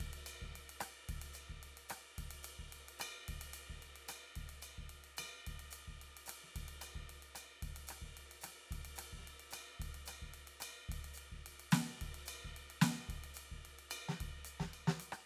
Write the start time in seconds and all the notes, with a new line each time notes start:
0.01 kick, ride
0.07 kick
0.14 ride
0.27 hi-hat pedal, ride bell
0.43 kick, snare
0.50 snare
0.54 snare, ride
0.58 snare
0.70 ride
0.81 cross-stick, hi-hat pedal, ride
1.10 kick, ride
1.22 ride
1.34 hi-hat pedal, ride bell
1.50 kick
1.64 ride
1.78 ride
1.90 cross-stick, hi-hat pedal, ride
2.19 kick, snare, ride
2.32 ride
2.44 hi-hat pedal, ride
2.60 kick
2.73 ride
2.89 ride
3.00 cross-stick, snare, hi-hat pedal, ride bell
3.29 kick, ride
3.42 ride
3.54 hi-hat pedal, ride
3.71 kick
3.83 ride
3.97 ride
4.09 cross-stick, hi-hat pedal, ride bell
4.36 kick, ride
4.50 ride
4.63 hi-hat pedal, ride bell
4.79 kick
4.90 ride
5.05 ride
5.18 snare, hi-hat pedal, ride bell
5.24 cross-stick
5.47 kick, ride
5.60 ride
5.72 hi-hat pedal, ride
5.89 kick
6.02 ride
6.18 ride
6.27 cross-stick, hi-hat pedal, ride
6.44 snare
6.57 kick, ride
6.66 snare, ride
6.82 cross-stick, hi-hat pedal, ride bell
6.95 kick, cross-stick
7.10 ride
7.23 ride
7.36 cross-stick, hi-hat pedal, ride bell
7.63 kick, ride
7.77 ride
7.88 cross-stick, hi-hat pedal, ride
8.03 kick
8.18 ride
8.32 ride
8.42 cross-stick, snare, hi-hat pedal, ride
8.72 kick, ride
8.86 ride
8.97 cross-stick, hi-hat pedal, ride
9.14 kick
9.19 snare
9.28 ride
9.40 ride
9.52 cross-stick, hi-hat pedal, ride bell
9.81 kick, ride
9.86 kick
9.95 ride
10.07 cross-stick, hi-hat pedal, ride bell
10.23 kick
10.35 ride
10.48 ride
10.61 cross-stick, snare, hi-hat pedal, ride bell
10.90 kick, ride
10.95 kick
11.05 ride
11.14 hi-hat pedal, ride
11.33 kick
11.47 ride
11.60 ride
11.72 snare, hi-hat pedal, ride
12.02 kick, ride
12.15 ride
12.27 hi-hat pedal, ride bell
12.46 kick, snare
12.50 snare
12.57 ride
12.71 ride
12.82 snare, hi-hat pedal, ride bell
13.10 kick, ride
13.25 ride
13.35 hi-hat pedal, ride
13.52 kick
13.63 snare, ride
13.80 ride
13.91 hi-hat pedal, ride bell
14.09 snare
14.21 kick, ride
14.46 hi-hat pedal, ride
14.61 kick, snare
14.74 ride bell
14.88 snare
15.01 hi-hat pedal, ride
15.13 cross-stick